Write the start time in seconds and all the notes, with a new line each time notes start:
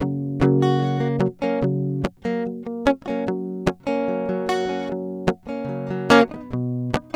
0.01 C#3 F#3 A#3
0.43 C#3 F#3 A#3
0.63 F#4
0.80 F#3
1.02 F#3 A#3
1.22 F#3
1.43 F#3 A#3 C#4
1.64 C#3 F#3
2.26 F#3 A#3
2.47 F#3
2.68 A#3
3.08 F#3 A#3 C#4
3.29 F#3 A#3
3.68 A#3
3.88 C#4
4.08 F#3
4.30 F#3
4.50 F#4
4.67 A#3 C#4
4.91 F#3
5.29 F#3
5.47 A#3 C#4
5.66 C#3
5.70 F#3
5.88 A#3
5.92 F#3
6.11 A#3 C#4
6.23 B3
6.32 D#4
6.55 B2
6.96 D#4